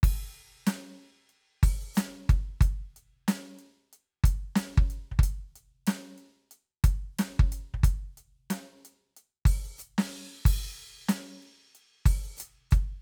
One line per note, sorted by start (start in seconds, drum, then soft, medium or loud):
0.03 kick loud
0.03 crash loud
0.34 closed hi-hat soft
0.67 snare loud
0.67 closed hi-hat loud
0.98 closed hi-hat soft
1.29 closed hi-hat soft
1.63 kick loud
1.63 open hi-hat loud
1.94 snare loud
1.94 closed hi-hat loud
1.94 hi-hat pedal loud
2.29 kick loud
2.29 closed hi-hat medium
2.61 kick loud
2.61 closed hi-hat medium
2.96 closed hi-hat medium
3.28 snare loud
3.28 closed hi-hat loud
3.59 closed hi-hat soft
3.93 closed hi-hat medium
4.24 kick loud
4.24 closed hi-hat loud
4.56 snare loud
4.56 closed hi-hat loud
4.77 kick loud
4.90 closed hi-hat medium
5.11 kick soft
5.19 kick loud
5.23 closed hi-hat loud
5.56 closed hi-hat medium
5.87 snare loud
5.87 closed hi-hat loud
6.18 closed hi-hat soft
6.51 closed hi-hat medium
6.84 kick loud
6.84 closed hi-hat loud
7.19 snare loud
7.19 closed hi-hat loud
7.39 kick loud
7.52 closed hi-hat medium
7.74 kick medium
7.83 kick loud
7.83 closed hi-hat loud
8.17 closed hi-hat medium
8.50 snare loud
8.50 closed hi-hat loud
8.85 closed hi-hat medium
9.17 closed hi-hat medium
9.45 kick loud
9.45 open hi-hat loud
9.78 hi-hat pedal loud
9.98 snare loud
9.98 crash medium
10.45 kick loud
10.45 crash loud
11.09 snare loud
11.09 closed hi-hat loud
11.42 closed hi-hat soft
11.75 closed hi-hat medium
12.06 kick loud
12.06 open hi-hat loud
12.37 closed hi-hat loud
12.37 hi-hat pedal loud
12.42 cross-stick soft
12.71 closed hi-hat medium
12.71 kick loud